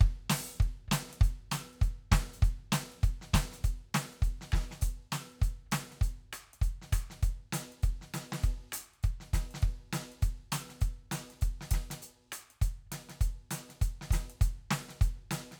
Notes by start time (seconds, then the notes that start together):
0.01 kick, closed hi-hat
0.30 open hi-hat, snare
0.56 hi-hat pedal
0.60 kick, closed hi-hat
0.88 kick, snare
0.92 closed hi-hat
1.09 snare
1.13 closed hi-hat
1.21 closed hi-hat, kick
1.52 closed hi-hat, snare
1.73 closed hi-hat
1.82 closed hi-hat, kick
2.12 closed hi-hat, kick, snare
2.33 closed hi-hat
2.43 closed hi-hat, kick
2.72 closed hi-hat, snare
2.92 closed hi-hat
3.03 closed hi-hat, kick
3.22 snare
3.34 closed hi-hat, kick, snare
3.52 closed hi-hat, snare
3.57 snare
3.64 closed hi-hat, kick
3.94 closed hi-hat, snare
4.13 closed hi-hat
4.22 closed hi-hat, kick
4.41 snare
4.52 kick, cross-stick, snare
4.71 snare
4.82 closed hi-hat, kick
5.12 closed hi-hat, snare
5.32 snare, closed hi-hat
5.42 closed hi-hat, kick
5.67 kick
5.72 closed hi-hat, snare
5.91 snare, closed hi-hat
5.96 snare
6.01 closed hi-hat, kick
6.33 closed hi-hat, cross-stick
6.54 closed hi-hat
6.62 closed hi-hat, kick
6.82 snare
6.93 closed hi-hat, kick, cross-stick
7.10 snare, closed hi-hat
7.23 closed hi-hat, kick
7.53 closed hi-hat, snare
7.72 closed hi-hat
7.83 closed hi-hat, kick
8.02 snare
8.14 closed hi-hat, snare
8.32 snare, closed hi-hat
8.43 closed hi-hat, kick
8.72 closed hi-hat, cross-stick
8.94 closed hi-hat
9.03 closed hi-hat, kick
9.20 snare
9.34 closed hi-hat, kick, snare
9.51 snare, closed hi-hat
9.62 kick, closed hi-hat
9.93 closed hi-hat, snare
10.12 closed hi-hat
10.22 closed hi-hat, kick
10.52 closed hi-hat, snare
10.70 snare, closed hi-hat
10.81 closed hi-hat, kick
11.12 closed hi-hat, snare
11.30 snare, closed hi-hat
11.41 closed hi-hat, kick
11.61 snare
11.71 kick, snare, closed hi-hat
11.91 snare, closed hi-hat
12.02 closed hi-hat
12.32 closed hi-hat, cross-stick
12.50 closed hi-hat
12.62 closed hi-hat, kick
12.87 kick
12.92 snare, closed hi-hat
13.09 snare, closed hi-hat
13.21 closed hi-hat, kick
13.43 kick
13.51 closed hi-hat, snare
13.70 snare, closed hi-hat
13.82 closed hi-hat, kick
14.01 snare
14.11 closed hi-hat, kick, snare
14.30 closed hi-hat
14.41 closed hi-hat, kick
14.71 closed hi-hat, snare
14.89 snare, closed hi-hat
15.01 closed hi-hat, kick
15.31 closed hi-hat, snare
15.52 snare, closed hi-hat